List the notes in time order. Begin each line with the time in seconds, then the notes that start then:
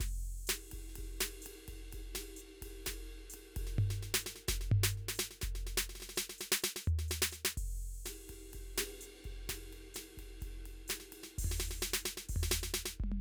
0.01 kick, snare, crash
0.07 kick
0.48 snare, hi-hat pedal, ride
0.72 kick, ride
0.79 kick
0.90 snare
0.96 kick, hi-hat pedal, ride
1.04 kick
1.21 snare, ride
1.43 hi-hat pedal
1.47 ride
1.69 kick, ride
1.74 kick
1.92 kick, hi-hat pedal, ride
2.00 kick
2.16 snare, ride
2.37 hi-hat pedal
2.50 snare
2.55 snare
2.63 kick, ride
2.68 kick
2.86 kick, snare, hi-hat pedal, ride
2.93 kick
3.31 hi-hat pedal, ride
3.57 kick, ride
3.64 kick, snare
3.79 floor tom
3.91 snare
4.03 snare
4.15 snare
4.20 hi-hat pedal
4.27 snare
4.36 snare
4.48 kick, snare, hi-hat pedal
4.56 kick
4.62 snare
4.72 floor tom
4.84 snare
4.91 hi-hat pedal
4.98 snare
5.09 snare
5.15 hi-hat pedal
5.20 snare
5.31 snare
5.42 kick, snare, hi-hat pedal
5.56 snare
5.67 snare
5.78 snare
5.90 snare
5.96 snare
6.01 snare
6.03 snare
6.10 snare
6.17 snare, hi-hat pedal
6.30 snare
6.39 snare, hi-hat pedal
6.52 snare
6.63 snare, hi-hat pedal
6.77 snare
6.85 floor tom, hi-hat pedal
6.99 snare
7.09 snare, hi-hat pedal
7.23 snare
7.32 snare, hi-hat pedal
7.45 snare
7.58 kick, hi-hat pedal, crash
7.64 kick
8.06 snare, hi-hat pedal, ride
8.30 kick, snare, ride
8.35 kick
8.40 snare
8.47 snare
8.50 snare, hi-hat pedal, ride
8.55 kick
8.60 kick
8.78 snare, ride
8.88 snare
9.01 hi-hat pedal, ride
9.18 snare
9.25 kick, ride
9.31 kick
9.50 kick, snare, ride
9.55 kick
9.73 ride
9.95 snare, hi-hat pedal, ride
10.18 kick, ride
10.23 kick
10.34 snare
10.39 kick, snare, hi-hat pedal, ride
10.48 kick
10.66 ride
10.88 snare, hi-hat pedal, ride
11.00 snare
11.13 ride
11.24 snare
11.39 kick, hi-hat pedal
11.45 kick, floor tom
11.52 snare
11.60 kick, snare
11.71 snare
11.83 snare
11.94 snare
12.01 hi-hat pedal
12.06 snare
12.18 snare
12.29 kick, hi-hat pedal
12.37 floor tom
12.44 snare
12.51 kick, snare
12.64 snare
12.69 hi-hat pedal
12.75 snare
12.86 snare
13.01 kick, mid tom
13.07 kick
13.12 mid tom